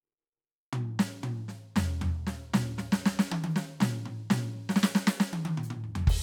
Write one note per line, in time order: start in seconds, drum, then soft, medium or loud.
0.73 mid tom loud
0.99 snare loud
1.23 mid tom loud
1.48 snare medium
1.76 snare loud
1.76 floor tom loud
2.01 floor tom loud
2.27 snare medium
2.54 snare loud
2.54 mid tom loud
2.78 snare medium
2.92 snare loud
3.06 snare loud
3.19 snare loud
3.32 high tom loud
3.44 high tom loud
3.49 hi-hat pedal soft
3.56 snare loud
3.80 snare loud
3.80 mid tom loud
4.06 mid tom medium
4.30 snare loud
4.30 mid tom loud
4.69 snare loud
4.76 snare loud
4.83 snare loud
4.95 snare loud
5.07 snare loud
5.20 snare loud
5.33 high tom loud
5.45 high tom loud
5.57 mid tom loud
5.63 hi-hat pedal medium
5.70 mid tom loud
5.84 floor tom soft
5.95 floor tom loud
6.07 kick loud
6.07 crash loud